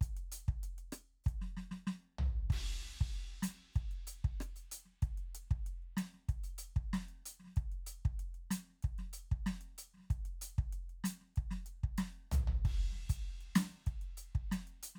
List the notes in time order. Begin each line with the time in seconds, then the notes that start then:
0.01 kick, closed hi-hat
0.17 closed hi-hat
0.32 closed hi-hat
0.48 kick
0.63 closed hi-hat
0.78 closed hi-hat
0.92 open hi-hat, cross-stick
1.24 kick, hi-hat pedal
1.29 closed hi-hat
1.41 snare
1.57 snare
1.71 snare
1.87 snare
2.19 floor tom
2.50 kick, ride
3.01 kick
3.14 closed hi-hat
3.26 closed hi-hat
3.43 open hi-hat, snare
3.48 snare
3.73 kick, closed hi-hat, hi-hat pedal
3.91 closed hi-hat
4.07 closed hi-hat
4.24 kick
4.41 cross-stick, closed hi-hat
4.56 closed hi-hat
4.72 closed hi-hat
4.86 snare
5.02 kick, closed hi-hat
5.18 closed hi-hat
5.35 closed hi-hat
5.51 kick
5.66 closed hi-hat
5.82 closed hi-hat
5.97 snare, closed hi-hat
6.14 snare
6.19 snare
6.29 kick, closed hi-hat
6.44 closed hi-hat
6.58 closed hi-hat
6.76 kick
6.93 snare, closed hi-hat
7.09 closed hi-hat
7.26 closed hi-hat
7.40 snare
7.44 snare
7.47 snare
7.56 kick, closed hi-hat
7.72 closed hi-hat
7.87 closed hi-hat
8.05 kick
8.19 closed hi-hat
8.34 closed hi-hat
8.51 closed hi-hat, snare
8.70 snare
8.83 kick, closed hi-hat
8.98 snare, closed hi-hat
9.13 closed hi-hat
9.32 kick
9.46 snare, closed hi-hat
9.61 closed hi-hat
9.78 closed hi-hat
9.94 snare
9.97 snare
9.99 snare
10.03 snare
10.10 kick, closed hi-hat
10.25 closed hi-hat
10.42 closed hi-hat
10.58 kick
10.73 closed hi-hat
10.90 closed hi-hat
11.04 closed hi-hat, snare
11.21 snare
11.36 kick, closed hi-hat
11.51 snare, closed hi-hat
11.66 closed hi-hat
11.84 kick
11.98 snare, closed hi-hat
12.32 floor tom, hi-hat pedal
12.48 floor tom
12.65 kick, ride
12.92 snare
13.10 closed hi-hat, kick
13.41 closed hi-hat
13.56 open hi-hat, snare
13.71 snare
13.87 kick, closed hi-hat
14.01 closed hi-hat
14.17 closed hi-hat
14.35 kick
14.52 snare, closed hi-hat
14.67 closed hi-hat
14.83 closed hi-hat
14.95 snare